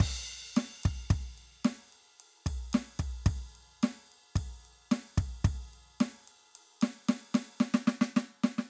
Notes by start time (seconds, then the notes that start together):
0.02 kick, crash
0.29 ride
0.57 snare, ride
0.84 kick, ride
1.10 kick, ride
1.38 ride
1.65 snare, ride
1.93 ride
2.20 ride
2.46 kick, ride
2.73 snare, ride
2.99 kick, ride
3.26 kick, ride
3.55 ride
3.83 snare, ride
4.12 ride
4.36 kick, ride
4.65 ride
4.91 snare, ride
5.18 kick, ride
5.45 kick, ride
5.74 ride
6.01 snare, ride
6.28 ride
6.55 ride
6.82 snare, ride
7.09 snare, ride
7.35 snare, ride
7.60 snare
7.74 snare
7.87 snare
8.01 snare
8.16 snare
8.44 snare
8.58 snare